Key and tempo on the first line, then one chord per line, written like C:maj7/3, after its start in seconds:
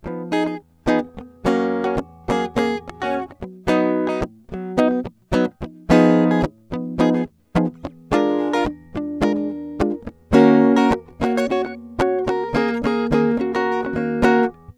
D# minor, 108 BPM
0.00 C#:9(*1)/3
1.46 F#:maj
3.68 B:maj/5
5.90 F:hdim7
8.12 A#:7/b7
10.35 D#:min7